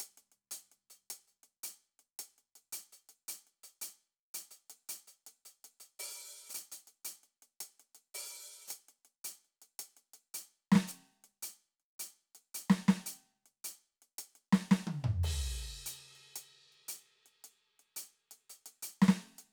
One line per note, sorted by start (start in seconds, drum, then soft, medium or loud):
0.00 closed hi-hat loud
0.17 closed hi-hat soft
0.32 closed hi-hat soft
0.51 closed hi-hat loud
0.72 closed hi-hat soft
0.90 closed hi-hat soft
1.10 closed hi-hat loud
1.27 closed hi-hat soft
1.43 closed hi-hat soft
1.63 closed hi-hat loud
1.84 closed hi-hat soft
1.99 closed hi-hat soft
2.19 closed hi-hat loud
2.38 closed hi-hat soft
2.55 closed hi-hat medium
2.72 closed hi-hat loud
2.92 closed hi-hat soft
3.09 closed hi-hat medium
3.28 closed hi-hat loud
3.47 closed hi-hat soft
3.63 closed hi-hat medium
3.81 closed hi-hat loud
4.34 closed hi-hat loud
4.51 closed hi-hat medium
4.70 closed hi-hat medium
4.89 closed hi-hat loud
5.07 closed hi-hat medium
5.26 closed hi-hat medium
5.45 closed hi-hat medium
5.64 closed hi-hat medium
5.80 closed hi-hat medium
5.99 open hi-hat loud
6.49 hi-hat pedal loud
6.54 closed hi-hat loud
6.72 closed hi-hat medium
6.87 closed hi-hat medium
7.05 closed hi-hat loud
7.23 closed hi-hat soft
7.42 closed hi-hat soft
7.60 closed hi-hat loud
7.80 closed hi-hat soft
7.95 closed hi-hat medium
8.14 open hi-hat loud
8.68 closed hi-hat loud
8.68 hi-hat pedal loud
8.89 closed hi-hat soft
9.05 closed hi-hat soft
9.24 closed hi-hat loud
9.45 closed hi-hat soft
9.62 closed hi-hat medium
9.79 closed hi-hat loud
9.97 closed hi-hat soft
10.14 closed hi-hat medium
10.34 open hi-hat loud
10.72 snare loud
10.75 snare loud
10.88 hi-hat pedal loud
11.24 closed hi-hat soft
11.42 closed hi-hat loud
11.80 closed hi-hat soft
11.99 closed hi-hat loud
12.35 closed hi-hat medium
12.54 closed hi-hat loud
12.70 snare loud
12.88 snare loud
13.06 closed hi-hat loud
13.46 closed hi-hat soft
13.64 closed hi-hat loud
14.02 closed hi-hat soft
14.18 closed hi-hat loud
14.35 closed hi-hat soft
14.52 snare loud
14.71 snare loud
14.87 high tom loud
15.04 mid tom loud
15.23 crash medium
15.23 crash loud
15.86 closed hi-hat loud
16.15 closed hi-hat soft
16.36 closed hi-hat loud
16.72 closed hi-hat soft
16.88 closed hi-hat loud
17.26 closed hi-hat soft
17.44 closed hi-hat medium
17.79 closed hi-hat soft
17.96 closed hi-hat loud
18.13 closed hi-hat soft
18.31 closed hi-hat medium
18.50 closed hi-hat medium
18.66 closed hi-hat medium
18.82 closed hi-hat loud
19.02 snare loud
19.08 snare loud
19.38 closed hi-hat medium